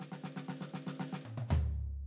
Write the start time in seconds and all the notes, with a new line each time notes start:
0.01 snare
0.12 snare
0.24 snare
0.36 snare
0.48 snare
0.61 snare
0.74 snare
0.87 snare
0.99 snare
1.13 snare
1.25 high tom
1.37 closed hi-hat, high tom
1.48 floor tom, hi-hat pedal